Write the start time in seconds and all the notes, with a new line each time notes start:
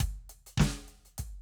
0.00 kick, closed hi-hat
0.29 closed hi-hat
0.46 closed hi-hat
0.58 kick, snare
0.88 closed hi-hat
1.05 closed hi-hat
1.18 kick, closed hi-hat